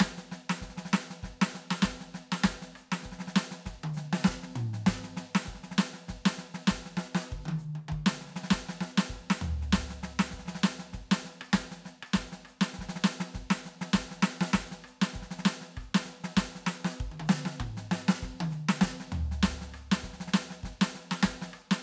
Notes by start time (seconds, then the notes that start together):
0.01 kick, snare
0.18 snare
0.32 snare, hi-hat pedal
0.50 snare
0.62 kick, snare
0.70 snare
0.77 snare
0.86 snare
0.94 snare, hi-hat pedal
1.11 snare
1.24 kick, snare
1.42 snare
1.53 snare, hi-hat pedal
1.71 snare
1.83 kick, snare
2.01 snare
2.15 snare, hi-hat pedal
2.33 snare
2.45 kick, snare
2.63 snare
2.76 cross-stick, hi-hat pedal
2.93 snare
3.04 kick, snare
3.13 snare
3.19 snare
3.21 snare
3.28 snare
3.36 snare, hi-hat pedal
3.52 snare
3.67 kick, snare
3.84 high tom
3.94 snare, hi-hat pedal
4.14 snare
4.25 kick, snare
4.44 snare
4.56 hi-hat pedal, mid tom
4.74 snare
4.87 kick, snare
5.05 snare
5.18 snare, hi-hat pedal
5.36 snare
5.46 kick, snare
5.56 snare
5.64 snare
5.72 snare
5.79 snare, hi-hat pedal
5.94 snare
6.09 kick, snare
6.26 snare
6.39 snare, hi-hat pedal
6.55 snare
6.68 kick, snare
6.86 snare
6.98 snare, hi-hat pedal
7.16 snare
7.32 kick, high tom
7.46 high tom
7.49 high tom
7.59 hi-hat pedal
7.76 high tom
7.89 kick, high tom
8.07 snare
8.21 snare, hi-hat pedal
8.28 snare
8.32 snare
8.37 snare
8.44 snare
8.51 kick, snare
8.70 snare
8.82 snare, hi-hat pedal
8.98 snare
9.10 kick
9.31 snare
9.42 floor tom, hi-hat pedal
9.63 snare
9.73 kick, snare
9.80 kick
9.91 snare
10.04 snare, hi-hat pedal
10.20 snare
10.32 kick, snare
10.40 snare
10.46 snare
10.49 snare
10.56 snare
10.64 snare, hi-hat pedal
10.80 snare
10.94 kick, snare
11.12 snare
11.25 snare, hi-hat pedal
11.42 cross-stick
11.54 kick, snare
11.72 snare
11.86 snare, hi-hat pedal
12.04 cross-stick
12.14 kick, snare
12.33 snare
12.46 cross-stick, hi-hat pedal
12.62 snare
12.74 snare
12.79 kick, snare
12.90 snare
12.97 snare
13.05 snare, hi-hat pedal
13.21 snare
13.35 kick, snare
13.51 snare
13.65 snare, hi-hat pedal
13.82 snare
13.94 kick, snare
14.12 snare
14.23 snare, hi-hat pedal
14.42 snare
14.54 kick, snare
14.72 snare
14.85 cross-stick, hi-hat pedal
15.02 snare
15.14 kick, snare
15.23 snare
15.32 snare
15.40 snare
15.46 snare, hi-hat pedal
15.62 snare
15.78 kick, cross-stick
15.95 snare
16.06 snare, hi-hat pedal
16.25 snare
16.38 kick, snare
16.56 snare
16.67 snare, hi-hat pedal
16.85 snare
17.01 kick
17.07 kick
17.12 kick, high tom
17.21 high tom
17.28 snare, hi-hat pedal
17.46 snare
17.61 kick, mid tom
17.78 snare
17.92 snare, hi-hat pedal
18.09 snare
18.23 kick, snare
18.32 kick
18.41 high tom
18.51 snare, hi-hat pedal
18.70 snare
18.82 kick, snare
19.01 snare
19.12 floor tom, hi-hat pedal
19.32 snare
19.44 kick, snare
19.62 snare
19.75 cross-stick, hi-hat pedal
19.92 snare
20.04 kick, snare
20.14 snare
20.21 snare
20.28 snare
20.34 snare, hi-hat pedal
20.51 snare
20.64 kick, snare
20.82 snare
20.95 snare, hi-hat pedal
21.12 snare
21.24 kick, snare
21.43 snare
21.54 cross-stick, hi-hat pedal
21.72 snare